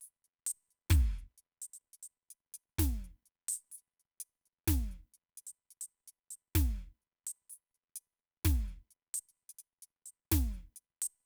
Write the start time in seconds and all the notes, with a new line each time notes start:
0.01 closed hi-hat, hi-hat pedal
0.24 closed hi-hat
0.46 closed hi-hat
0.71 closed hi-hat
0.90 closed hi-hat, kick, snare
1.19 closed hi-hat
1.38 closed hi-hat
1.62 closed hi-hat
1.73 closed hi-hat
1.93 closed hi-hat
2.03 closed hi-hat
2.30 closed hi-hat
2.54 closed hi-hat
2.79 kick, snare, closed hi-hat
3.04 closed hi-hat
3.26 closed hi-hat
3.48 open hi-hat
3.71 hi-hat pedal
3.78 closed hi-hat
4.00 closed hi-hat
4.20 closed hi-hat
4.46 closed hi-hat
4.68 kick, snare, closed hi-hat
4.91 closed hi-hat
5.14 closed hi-hat
5.37 closed hi-hat
5.47 closed hi-hat
5.71 closed hi-hat
5.81 closed hi-hat
6.08 closed hi-hat
6.30 closed hi-hat
6.55 kick, snare, closed hi-hat
7.02 closed hi-hat
7.27 closed hi-hat
7.50 hi-hat pedal
7.74 closed hi-hat
7.96 closed hi-hat
8.45 kick, snare, closed hi-hat
8.68 closed hi-hat
8.91 closed hi-hat
9.14 closed hi-hat
9.29 closed hi-hat
9.49 closed hi-hat
9.59 closed hi-hat
9.82 closed hi-hat
10.06 closed hi-hat
10.32 kick, snare, closed hi-hat
10.54 closed hi-hat
10.76 closed hi-hat
11.02 closed hi-hat